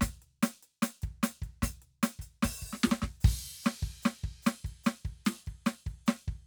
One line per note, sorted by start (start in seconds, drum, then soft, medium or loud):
0.01 open hi-hat loud
0.01 kick medium
0.01 snare loud
0.22 closed hi-hat soft
0.43 closed hi-hat loud
0.43 snare loud
0.63 closed hi-hat medium
0.82 closed hi-hat loud
0.82 snare loud
1.02 kick medium
1.02 closed hi-hat medium
1.23 closed hi-hat loud
1.23 snare loud
1.42 kick soft
1.42 closed hi-hat soft
1.62 open hi-hat loud
1.62 kick medium
1.62 snare medium
1.82 closed hi-hat soft
2.03 closed hi-hat loud
2.03 snare loud
2.19 closed hi-hat medium
2.19 kick soft
2.43 open hi-hat loud
2.43 kick medium
2.43 snare loud
2.62 open hi-hat soft
2.62 kick soft
2.73 snare medium
2.81 snare loud
2.81 hi-hat pedal medium
2.87 kick soft
2.91 snare loud
3.02 kick medium
3.02 snare medium
3.21 kick loud
3.21 hi-hat pedal medium
3.21 crash loud
3.31 snare soft
3.63 snare loud
3.63 hi-hat pedal medium
3.63 crash medium
3.69 ride soft
3.82 kick medium
4.02 snare loud
4.02 hi-hat pedal medium
4.02 ride bell soft
4.24 kick medium
4.43 snare loud
4.43 hi-hat pedal medium
4.47 ride bell medium
4.64 kick soft
4.64 ride bell soft
4.84 snare loud
4.84 hi-hat pedal medium
4.84 ride bell medium
5.05 kick medium
5.05 ride soft
5.25 snare loud
5.25 hi-hat pedal medium
5.25 ride bell medium
5.47 kick soft
5.47 ride soft
5.66 snare loud
5.66 hi-hat pedal medium
5.66 ride bell medium
5.86 kick medium
5.86 ride soft
6.06 snare loud
6.06 hi-hat pedal medium
6.06 ride bell soft
6.28 kick medium